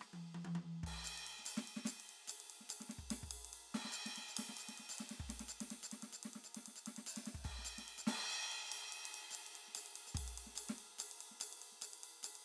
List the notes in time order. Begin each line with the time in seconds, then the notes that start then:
0.01 cross-stick
0.13 high tom
0.34 high tom
0.45 high tom
0.55 high tom
0.83 kick, ride
1.04 ride, percussion
1.18 ride
1.27 ride
1.39 snare
1.45 ride, percussion
1.57 snare, ride
1.67 ride
1.76 snare
1.85 snare, ride, percussion
2.00 ride
2.06 ride, percussion
2.27 ride, percussion
2.40 ride
2.50 ride
2.60 snare
2.69 ride, percussion
2.80 snare, ride
2.89 snare, ride
2.98 kick
3.10 snare, ride
3.23 kick
3.31 ride
3.45 ride
3.53 ride
3.71 snare, percussion, ride
3.84 snare
3.92 ride, percussion
4.05 snare, ride
4.16 snare, ride
4.29 percussion
4.37 snare, ride
4.49 snare
4.57 ride, percussion
4.68 snare, ride
4.77 snare, ride
4.89 percussion
4.98 snare, ride
5.09 snare, ride
5.19 kick
5.29 snare, ride
5.39 snare, ride
5.48 percussion
5.60 snare, ride
5.70 snare, ride
5.83 percussion
5.91 snare, ride
6.02 snare, ride
6.13 percussion
6.23 snare, ride
6.33 snare, ride
6.44 percussion
6.55 snare, ride
6.66 snare, ride
6.76 percussion
6.86 snare, ride
6.96 snare, ride
7.06 percussion
7.16 snare, ride
7.26 snare, ride
7.34 kick
7.44 kick, ride
7.58 snare
7.65 ride, percussion
7.78 snare, ride
7.88 ride
7.98 percussion
8.07 snare, ride
8.30 ride, percussion
8.43 ride
8.52 ride
8.65 percussion
8.72 ride
8.92 ride
9.05 ride
9.14 ride
9.31 percussion
9.35 ride
9.46 ride
9.55 ride
9.68 snare
9.75 ride, percussion
9.86 ride
9.96 ride
10.07 percussion
10.14 kick, ride
10.28 ride
10.37 ride
10.46 snare
10.56 ride, percussion
10.69 snare, ride
10.78 ride
10.99 ride, percussion
11.11 ride
11.19 ride, percussion
11.31 snare
11.40 ride, percussion
11.53 ride
11.62 ride
11.72 snare
11.81 ride, percussion
11.93 ride
12.03 ride
12.23 ride, percussion
12.35 ride